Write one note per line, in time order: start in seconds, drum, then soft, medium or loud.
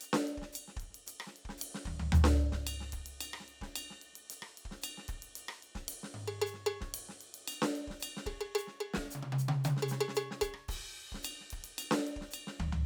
0.01 hi-hat pedal medium
0.01 ride bell medium
0.13 snare loud
0.27 ride soft
0.37 kick soft
0.42 snare soft
0.53 hi-hat pedal medium
0.53 ride bell medium
0.68 snare soft
0.75 kick soft
0.75 cross-stick soft
0.80 kick soft
0.80 ride soft
0.90 snare soft
0.95 snare soft
0.95 ride medium
1.07 hi-hat pedal medium
1.07 ride medium
1.20 cross-stick medium
1.27 snare soft
1.36 ride soft
1.45 kick soft
1.49 snare soft
1.58 hi-hat pedal medium
1.58 ride loud
1.74 snare medium
1.85 kick soft
1.85 floor tom medium
1.91 kick soft
2.00 floor tom loud
2.12 hi-hat pedal medium
2.12 floor tom loud
2.24 snare loud
2.37 floor tom soft
2.52 kick soft
2.52 snare medium
2.67 hi-hat pedal medium
2.67 ride bell loud
2.81 snare soft
2.90 kick soft
2.90 cross-stick soft
2.90 ride medium
2.98 kick soft
3.05 snare soft
3.05 ride medium
3.08 snare soft
3.21 hi-hat pedal medium
3.21 ride bell loud
3.33 cross-stick medium
3.40 snare soft
3.48 ride soft
3.61 kick soft
3.61 snare soft
3.76 hi-hat pedal medium
3.76 ride bell loud
3.90 snare soft
4.02 ride soft
4.13 snare soft
4.13 ride medium
4.17 snare soft
4.30 hi-hat pedal medium
4.30 ride medium
4.42 cross-stick medium
4.57 ride medium
4.65 kick soft
4.71 snare soft
4.82 hi-hat pedal medium
4.82 ride bell loud
4.98 snare soft
5.06 kick soft
5.06 cross-stick soft
5.06 ride medium
5.16 kick soft
5.22 snare soft
5.22 ride medium
5.36 hi-hat pedal medium
5.36 ride medium
5.49 cross-stick medium
5.63 ride soft
5.75 kick soft
5.75 snare soft
5.88 hi-hat pedal medium
5.88 ride loud
6.03 snare soft
6.14 mid tom medium
6.28 percussion medium
6.42 percussion loud
6.46 hi-hat pedal medium
6.54 snare soft
6.67 percussion loud
6.81 kick soft
6.81 snare soft
6.94 hi-hat pedal medium
6.94 ride loud
7.09 snare soft
7.21 ride medium
7.34 ride medium
7.48 hi-hat pedal medium
7.48 ride bell loud
7.62 snare medium
7.75 ride soft
7.87 kick soft
7.87 snare soft
8.00 hi-hat pedal medium
8.00 ride bell loud
8.17 snare medium
8.26 kick soft
8.26 snare soft
8.26 percussion medium
8.32 kick soft
8.41 percussion medium
8.55 hi-hat pedal medium
8.55 percussion loud
8.67 snare soft
8.81 percussion medium
8.94 kick soft
8.94 snare medium
9.11 hi-hat pedal loud
9.15 high tom medium
9.23 high tom loud
9.32 high tom loud
9.39 hi-hat pedal medium
9.49 high tom loud
9.64 hi-hat pedal medium
9.64 high tom loud
9.77 snare medium
9.83 percussion loud
9.88 snare medium
9.88 hi-hat pedal medium
10.01 percussion loud
10.08 snare soft
10.15 hi-hat pedal medium
10.15 percussion loud
10.31 snare medium
10.41 kick soft
10.41 hi-hat pedal medium
10.41 percussion loud
10.54 cross-stick medium
10.69 kick medium
10.69 hi-hat pedal medium
10.69 crash medium
10.82 kick soft
11.12 kick soft
11.12 snare soft
11.23 hi-hat pedal medium
11.23 ride bell loud
11.41 snare soft
11.45 cross-stick soft
11.51 kick soft
11.51 ride medium
11.62 snare soft
11.62 ride medium
11.66 snare soft
11.78 hi-hat pedal medium
11.78 ride bell loud
11.91 snare loud
11.98 snare soft
12.07 ride soft
12.16 kick soft
12.21 snare soft
12.31 hi-hat pedal medium
12.31 ride bell loud
12.47 snare medium
12.60 kick soft
12.60 floor tom loud
12.73 floor tom loud